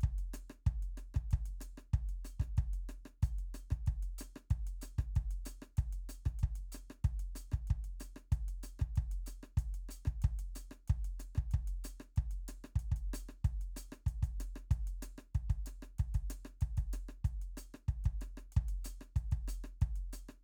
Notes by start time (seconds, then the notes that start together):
0.01 kick, closed hi-hat
0.18 closed hi-hat
0.34 cross-stick, closed hi-hat
0.50 cross-stick
0.67 kick, closed hi-hat
0.83 closed hi-hat
0.98 cross-stick, closed hi-hat
1.14 kick, cross-stick
1.31 kick, closed hi-hat
1.46 closed hi-hat
1.61 cross-stick, closed hi-hat
1.78 cross-stick
1.94 kick, closed hi-hat
2.09 closed hi-hat
2.25 closed hi-hat, cross-stick
2.40 kick, cross-stick
2.57 kick, closed hi-hat
2.74 closed hi-hat
2.89 cross-stick, closed hi-hat
3.06 cross-stick
3.23 closed hi-hat, kick
3.39 closed hi-hat
3.55 closed hi-hat, cross-stick
3.71 kick, cross-stick
3.87 kick, closed hi-hat
4.03 closed hi-hat
4.18 closed hi-hat, cross-stick
4.36 cross-stick
4.51 kick, closed hi-hat
4.67 closed hi-hat
4.82 closed hi-hat, cross-stick
4.99 kick, cross-stick
5.16 kick, closed hi-hat
5.31 closed hi-hat
5.46 closed hi-hat, cross-stick
5.62 cross-stick
5.77 kick, closed hi-hat
5.93 closed hi-hat
6.09 closed hi-hat, cross-stick
6.26 kick, cross-stick
6.39 closed hi-hat
6.43 kick
6.56 closed hi-hat
6.72 closed hi-hat, cross-stick
6.90 cross-stick
7.05 kick, closed hi-hat
7.20 closed hi-hat
7.36 closed hi-hat, cross-stick
7.52 kick, cross-stick
7.68 kick, closed hi-hat
7.84 closed hi-hat
8.00 closed hi-hat, cross-stick
8.16 cross-stick
8.32 kick, closed hi-hat
8.49 closed hi-hat
8.63 closed hi-hat, cross-stick
8.80 kick, cross-stick
8.96 kick, closed hi-hat
9.12 closed hi-hat
9.27 closed hi-hat, cross-stick
9.43 cross-stick
9.57 kick, closed hi-hat
9.74 closed hi-hat
9.89 closed hi-hat, cross-stick
10.05 kick, cross-stick
10.22 kick, closed hi-hat
10.39 closed hi-hat
10.56 closed hi-hat, cross-stick
10.71 cross-stick
10.88 kick, closed hi-hat
11.05 closed hi-hat
11.20 cross-stick, closed hi-hat
11.35 kick, cross-stick
11.51 kick, closed hi-hat
11.68 closed hi-hat
11.84 closed hi-hat, cross-stick
12.00 cross-stick
12.16 kick, closed hi-hat
12.31 closed hi-hat
12.48 cross-stick, closed hi-hat
12.64 cross-stick
12.76 kick, closed hi-hat
12.92 kick
12.96 closed hi-hat
13.14 closed hi-hat, cross-stick
13.29 cross-stick
13.45 kick, closed hi-hat
13.61 closed hi-hat
13.77 closed hi-hat, cross-stick
13.92 cross-stick
14.07 kick, closed hi-hat
14.23 kick, closed hi-hat
14.40 cross-stick, closed hi-hat
14.56 cross-stick
14.71 kick, closed hi-hat
14.87 closed hi-hat
15.03 cross-stick, closed hi-hat
15.18 cross-stick
15.35 kick, closed hi-hat
15.50 kick, closed hi-hat
15.66 cross-stick, closed hi-hat
15.83 cross-stick
15.99 kick, closed hi-hat
16.14 kick, closed hi-hat
16.30 cross-stick, closed hi-hat
16.45 cross-stick
16.61 kick, closed hi-hat
16.77 kick, closed hi-hat
16.93 cross-stick, closed hi-hat
17.09 cross-stick
17.25 kick, closed hi-hat
17.42 closed hi-hat
17.57 closed hi-hat, cross-stick
17.74 cross-stick
17.89 kick, closed hi-hat
18.04 kick, closed hi-hat
18.21 cross-stick, closed hi-hat
18.38 cross-stick
18.52 closed hi-hat
18.57 kick
18.69 closed hi-hat
18.85 closed hi-hat, cross-stick
19.01 cross-stick
19.16 kick, closed hi-hat
19.32 kick, closed hi-hat
19.48 closed hi-hat, cross-stick
19.64 cross-stick
19.82 kick, closed hi-hat
19.96 closed hi-hat
20.13 closed hi-hat, cross-stick
20.29 cross-stick